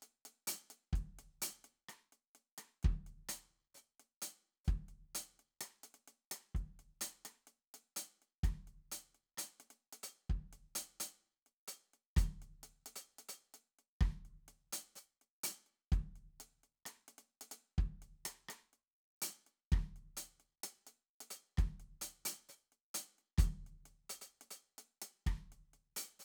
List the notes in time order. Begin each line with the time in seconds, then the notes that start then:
0.02 closed hi-hat
0.25 closed hi-hat
0.47 closed hi-hat
0.70 closed hi-hat
0.93 kick, closed hi-hat
1.19 closed hi-hat
1.42 closed hi-hat
1.64 closed hi-hat
1.89 cross-stick, closed hi-hat
2.12 closed hi-hat
2.35 closed hi-hat
2.58 cross-stick, closed hi-hat
2.83 kick, closed hi-hat
3.06 closed hi-hat
3.29 closed hi-hat, cross-stick
3.74 closed hi-hat, hi-hat pedal
4.00 closed hi-hat
4.22 open hi-hat
4.65 kick, closed hi-hat, hi-hat pedal
4.88 closed hi-hat
5.15 closed hi-hat
5.39 closed hi-hat
5.61 cross-stick, closed hi-hat
5.83 closed hi-hat
5.94 closed hi-hat
6.08 closed hi-hat
6.31 cross-stick, closed hi-hat
6.55 kick, closed hi-hat
6.79 closed hi-hat
7.01 closed hi-hat, cross-stick
7.25 cross-stick, closed hi-hat
7.47 closed hi-hat
7.74 closed hi-hat
7.96 closed hi-hat
8.22 closed hi-hat
8.43 kick, cross-stick, closed hi-hat
8.67 closed hi-hat
8.92 closed hi-hat
9.15 closed hi-hat
9.38 closed hi-hat, cross-stick
9.60 closed hi-hat
9.70 closed hi-hat
9.93 closed hi-hat
10.03 closed hi-hat
10.29 kick, closed hi-hat
10.53 closed hi-hat
10.75 closed hi-hat
11.00 closed hi-hat
11.26 closed hi-hat
11.46 closed hi-hat
11.68 closed hi-hat
11.94 closed hi-hat
12.16 closed hi-hat, kick, cross-stick
12.42 closed hi-hat
12.63 closed hi-hat
12.86 closed hi-hat
12.96 closed hi-hat
13.19 closed hi-hat
13.29 closed hi-hat
13.54 closed hi-hat
13.79 closed hi-hat
14.01 kick, cross-stick, closed hi-hat
14.25 closed hi-hat
14.48 closed hi-hat
14.73 closed hi-hat
14.96 hi-hat pedal
15.00 closed hi-hat
15.21 closed hi-hat
15.44 closed hi-hat
15.66 closed hi-hat
15.92 kick, closed hi-hat
16.16 closed hi-hat
16.40 closed hi-hat
16.63 closed hi-hat
16.86 cross-stick, closed hi-hat
17.08 closed hi-hat
17.18 closed hi-hat
17.41 closed hi-hat
17.51 closed hi-hat
17.78 kick, closed hi-hat
18.02 closed hi-hat
18.25 cross-stick, closed hi-hat
18.49 cross-stick, closed hi-hat
18.73 closed hi-hat
19.22 closed hi-hat
19.46 closed hi-hat
19.72 kick, cross-stick, closed hi-hat
19.96 closed hi-hat
20.17 closed hi-hat
20.40 closed hi-hat
20.63 closed hi-hat
20.87 closed hi-hat
21.21 closed hi-hat
21.30 closed hi-hat
21.57 kick, cross-stick, closed hi-hat
21.80 closed hi-hat
22.01 closed hi-hat
22.25 closed hi-hat
22.49 closed hi-hat, hi-hat pedal
22.72 closed hi-hat
22.94 closed hi-hat
23.18 closed hi-hat
23.38 closed hi-hat, kick, cross-stick
23.66 closed hi-hat
23.86 closed hi-hat
24.10 closed hi-hat
24.21 closed hi-hat
24.41 closed hi-hat
24.51 closed hi-hat
24.78 closed hi-hat
25.02 closed hi-hat
25.26 kick, cross-stick, closed hi-hat
25.52 closed hi-hat
25.73 closed hi-hat
25.96 open hi-hat
26.19 hi-hat pedal